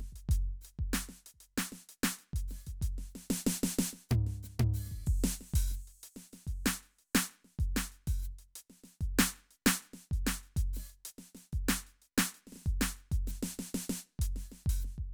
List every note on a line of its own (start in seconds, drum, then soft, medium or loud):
0.01 snare soft
0.13 kick soft
0.13 closed hi-hat soft
0.30 open hi-hat medium
0.30 kick medium
0.62 closed hi-hat medium
0.62 hi-hat pedal soft
0.80 kick soft
0.94 snare medium
0.94 closed hi-hat loud
1.09 snare soft
1.27 closed hi-hat medium
1.35 kick soft
1.41 closed hi-hat medium
1.58 snare medium
1.73 snare soft
1.90 closed hi-hat medium
2.04 snare loud
2.19 closed hi-hat soft
2.34 open hi-hat medium
2.34 kick soft
2.49 snare soft
2.49 hi-hat pedal medium
2.67 kick soft
2.67 closed hi-hat medium
2.82 open hi-hat medium
2.82 kick soft
2.99 snare soft
3.09 hi-hat pedal soft
3.16 snare soft
3.31 snare medium
3.47 snare loud
3.64 snare medium
3.79 snare loud
3.94 snare soft
4.10 floor tom loud
4.10 hi-hat pedal soft
4.27 snare soft
4.44 snare soft
4.44 hi-hat pedal medium
4.60 floor tom loud
4.74 hi-hat pedal medium
4.87 snare soft
4.92 kick soft
5.07 kick medium
5.07 crash medium
5.24 snare medium
5.41 snare soft
5.54 open hi-hat loud
5.54 kick medium
5.72 snare soft
5.72 hi-hat pedal medium
5.88 closed hi-hat soft
6.04 closed hi-hat medium
6.17 snare soft
6.33 snare soft
6.33 closed hi-hat soft
6.47 kick soft
6.47 closed hi-hat soft
6.67 snare loud
6.84 closed hi-hat soft
6.99 closed hi-hat soft
7.16 snare loud
7.32 closed hi-hat soft
7.45 snare soft
7.60 kick medium
7.60 closed hi-hat soft
7.77 snare medium
7.92 closed hi-hat soft
8.08 kick medium
8.08 open hi-hat medium
8.23 hi-hat pedal medium
8.39 closed hi-hat soft
8.56 closed hi-hat medium
8.70 snare soft
8.84 snare soft
8.84 closed hi-hat soft
9.01 kick soft
9.01 closed hi-hat soft
9.19 snare loud
9.36 closed hi-hat soft
9.51 closed hi-hat soft
9.67 snare loud
9.83 closed hi-hat soft
9.94 snare soft
10.12 kick medium
10.12 closed hi-hat soft
10.27 snare medium
10.44 closed hi-hat soft
10.57 closed hi-hat medium
10.57 kick medium
10.74 snare soft
10.74 hi-hat pedal medium
10.90 closed hi-hat soft
11.06 closed hi-hat medium
11.19 snare soft
11.35 snare soft
11.35 closed hi-hat soft
11.53 kick soft
11.53 closed hi-hat soft
11.69 snare loud
11.87 closed hi-hat soft
12.02 closed hi-hat soft
12.19 snare loud
12.35 closed hi-hat soft
12.48 snare soft
12.53 snare soft
12.56 snare soft
12.62 snare soft
12.67 kick medium
12.67 closed hi-hat soft
12.82 snare medium
12.97 closed hi-hat soft
13.12 kick medium
13.12 open hi-hat medium
13.28 snare soft
13.28 hi-hat pedal medium
13.43 snare medium
13.60 snare medium
13.75 snare medium
13.90 snare medium
14.20 open hi-hat loud
14.20 kick medium
14.37 snare soft
14.37 hi-hat pedal soft
14.52 snare soft
14.67 open hi-hat medium
14.67 kick medium
14.80 hi-hat pedal medium
14.85 snare soft
14.99 kick soft